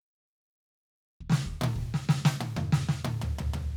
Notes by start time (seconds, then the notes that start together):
1.20 kick
1.30 snare
1.32 snare
1.46 kick
1.61 high tom
1.63 high tom
1.76 kick
1.80 snare
1.94 snare
2.09 snare
2.25 snare
2.41 high tom
2.56 mid tom
2.72 snare
2.89 snare
3.05 high tom
3.22 floor tom
3.38 floor tom
3.53 floor tom